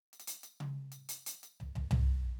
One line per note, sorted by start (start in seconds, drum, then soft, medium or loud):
0.13 closed hi-hat medium
0.20 closed hi-hat medium
0.27 closed hi-hat loud
0.43 closed hi-hat medium
0.60 high tom loud
0.92 closed hi-hat medium
1.09 closed hi-hat loud
1.26 closed hi-hat loud
1.43 closed hi-hat medium
1.60 floor tom medium
1.75 floor tom medium
1.91 floor tom loud